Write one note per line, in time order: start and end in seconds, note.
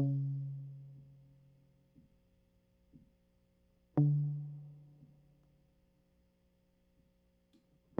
0.00 1.94 C#3
3.99 5.42 D3